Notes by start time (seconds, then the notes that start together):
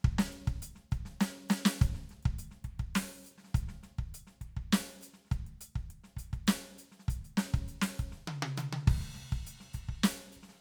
0.01 kick, snare, closed hi-hat
0.19 snare
0.32 snare, closed hi-hat
0.47 kick, closed hi-hat
0.62 closed hi-hat
0.75 snare
0.91 closed hi-hat, kick
1.05 snare
1.20 snare, hi-hat pedal
1.49 snare, hi-hat pedal
1.65 snare
1.81 closed hi-hat, kick
1.94 snare
2.09 snare, closed hi-hat
2.23 kick, closed hi-hat
2.38 closed hi-hat
2.51 snare
2.64 kick, closed hi-hat
2.79 kick, closed hi-hat
2.95 open hi-hat, snare
3.04 snare
3.08 snare
3.15 snare
3.24 closed hi-hat, hi-hat pedal
3.38 snare
3.44 snare
3.47 snare
3.54 closed hi-hat, kick
3.68 snare
3.83 snare, closed hi-hat
3.98 kick, closed hi-hat
4.14 closed hi-hat
4.27 snare
4.41 kick, closed hi-hat
4.56 kick, closed hi-hat
4.72 open hi-hat, snare
4.80 snare
5.01 closed hi-hat, hi-hat pedal
5.13 snare
5.24 snare
5.27 snare
5.31 kick, closed hi-hat
5.47 closed hi-hat
5.61 closed hi-hat
5.75 kick, snare
5.90 closed hi-hat
6.04 snare
6.17 closed hi-hat, kick
6.33 kick, closed hi-hat
6.47 closed hi-hat, snare
6.64 snare
6.78 closed hi-hat
6.92 snare
6.99 snare
7.08 closed hi-hat, kick
7.24 closed hi-hat
7.37 snare
7.54 closed hi-hat, kick
7.68 closed hi-hat
7.82 snare
7.99 closed hi-hat, kick
8.12 snare
8.27 high tom
8.42 high tom
8.57 hi-hat pedal, high tom
8.73 high tom
8.87 kick, crash
9.00 snare
9.14 snare
9.32 closed hi-hat, kick
9.47 closed hi-hat
9.60 snare
9.73 closed hi-hat, kick, snare
9.88 kick, closed hi-hat
10.03 open hi-hat, snare
10.32 open hi-hat, hi-hat pedal
10.36 kick
10.43 snare
10.49 snare
10.52 snare